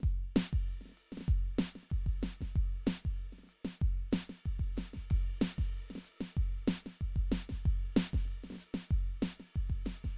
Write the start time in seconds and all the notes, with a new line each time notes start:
0.00 kick, snare, ride
0.36 snare, hi-hat pedal, ride
0.53 kick
0.68 ride
0.81 snare
0.85 snare
0.89 snare
0.92 snare
0.97 hi-hat pedal, ride
1.12 snare
1.17 snare
1.21 snare
1.28 kick, ride
1.41 ride
1.58 snare, hi-hat pedal, ride
1.75 snare
1.83 snare
1.90 kick, ride
2.06 kick, ride
2.21 snare, hi-hat pedal, ride
2.41 kick, snare
2.56 kick, ride
2.87 snare, hi-hat pedal, ride
3.05 kick
3.13 snare, ride
3.32 snare
3.38 snare
3.43 snare
3.47 snare, hi-hat pedal, ride
3.65 snare
3.81 kick, ride
3.97 ride
4.11 snare, hi-hat pedal, ride
4.29 snare
4.45 kick, ride
4.59 kick, ride
4.76 snare, hi-hat pedal, ride
4.93 kick, snare
5.10 kick, ride
5.41 snare, hi-hat pedal, ride
5.58 kick, snare
5.73 ride
5.90 snare
5.95 snare
5.98 snare
6.04 hi-hat pedal, ride
6.20 snare
6.37 kick, ride
6.52 ride
6.67 snare, hi-hat pedal, ride
6.86 snare
7.01 kick, ride
7.16 kick, ride
7.32 snare, hi-hat pedal, ride
7.49 kick, snare
7.65 kick, ride
7.96 snare, hi-hat pedal, ride
8.13 kick, snare
8.25 snare, ride
8.43 snare
8.50 snare
8.52 snare
8.54 snare
8.55 snare, hi-hat pedal, ride
8.74 snare
8.91 kick, ride
9.06 ride
9.22 snare, hi-hat pedal, ride
9.40 snare
9.55 kick, ride
9.69 kick, ride
9.85 snare, hi-hat pedal, ride
10.04 kick, snare